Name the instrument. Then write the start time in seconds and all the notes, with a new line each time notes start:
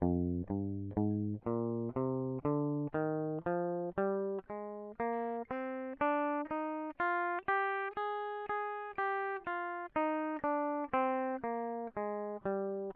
electric guitar
0.05 F2
0.53 G2
0.99 G#2
1.48 A#2
1.98 C3
2.47 D3
2.96 D#3
3.48 F3
3.99 G3
4.51 G#3
5.01 A#3
5.52 C4
6.02 D4
6.52 D#4
7.01 F4
7.49 G4
7.98 G#4
8.50 G#4
8.99 G4
9.48 F4
9.97 D#4
10.45 D4
10.94 C4
11.45 A#3
11.98 G#3
12.47 G3